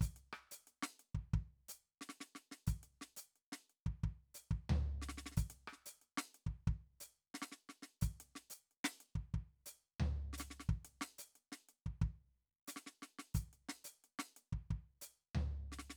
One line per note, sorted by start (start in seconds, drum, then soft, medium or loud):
0.01 kick medium
0.01 hi-hat pedal medium
0.16 closed hi-hat soft
0.33 cross-stick medium
0.51 hi-hat pedal medium
0.67 closed hi-hat soft
0.83 snare medium
1.00 closed hi-hat soft
1.15 kick soft
1.34 kick medium
1.69 hi-hat pedal medium
2.01 snare soft
2.09 snare soft
2.21 snare soft
2.35 snare soft
2.52 snare soft
2.67 kick medium
2.67 hi-hat pedal medium
2.83 closed hi-hat soft
3.01 snare soft
3.17 hi-hat pedal medium
3.36 open hi-hat soft
3.52 snare soft
3.70 closed hi-hat soft
3.86 kick soft
4.04 kick soft
4.35 hi-hat pedal medium
4.51 kick soft
4.70 floor tom loud
5.02 snare soft
5.09 snare soft
5.18 snare soft
5.26 snare soft
5.32 snare soft
5.37 kick medium
5.37 hi-hat pedal medium
5.50 closed hi-hat soft
5.68 cross-stick medium
5.73 snare soft
5.86 hi-hat pedal medium
6.02 closed hi-hat soft
6.18 snare medium
6.35 closed hi-hat soft
6.47 kick soft
6.67 kick medium
7.00 hi-hat pedal medium
7.34 snare soft
7.42 snare medium
7.52 snare soft
7.69 snare soft
7.83 snare soft
8.01 kick medium
8.01 hi-hat pedal medium
8.20 open hi-hat soft
8.36 snare soft
8.50 hi-hat pedal medium
8.71 closed hi-hat soft
8.84 snare medium
9.00 closed hi-hat soft
9.15 kick soft
9.34 kick soft
9.66 hi-hat pedal medium
10.00 floor tom medium
10.33 snare soft
10.38 snare soft
10.38 hi-hat pedal medium
10.51 snare soft
10.60 snare soft
10.69 kick medium
10.85 closed hi-hat soft
11.01 snare medium
11.18 hi-hat pedal medium
11.36 closed hi-hat soft
11.52 snare soft
11.69 closed hi-hat soft
11.86 kick soft
12.02 kick medium
12.68 snare soft
12.68 hi-hat pedal medium
12.76 snare soft
12.87 snare soft
13.02 snare soft
13.19 snare soft
13.34 kick soft
13.34 hi-hat pedal medium
13.53 closed hi-hat soft
13.69 snare medium
13.84 hi-hat pedal medium
14.04 closed hi-hat soft
14.19 snare medium
14.37 closed hi-hat soft
14.53 kick soft
14.71 kick soft
15.02 hi-hat pedal medium
15.35 floor tom medium
15.72 snare soft
15.79 snare soft
15.90 snare soft